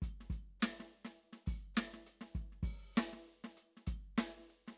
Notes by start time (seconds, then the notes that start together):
0.02 closed hi-hat, kick
0.21 snare
0.30 open hi-hat, kick
0.60 closed hi-hat, snare, hi-hat pedal
0.80 snare
0.91 closed hi-hat
1.05 closed hi-hat, snare
1.19 closed hi-hat
1.33 snare
1.46 open hi-hat, kick
1.75 closed hi-hat, snare, hi-hat pedal
1.94 snare
2.06 closed hi-hat
2.21 snare, closed hi-hat
2.35 closed hi-hat, kick
2.52 snare
2.63 open hi-hat, kick
2.95 closed hi-hat, snare, hi-hat pedal
3.13 snare
3.27 closed hi-hat
3.44 snare, closed hi-hat
3.57 closed hi-hat
3.77 snare
3.87 open hi-hat, kick
4.15 closed hi-hat, snare, hi-hat pedal
4.39 snare
4.50 closed hi-hat
4.67 snare, closed hi-hat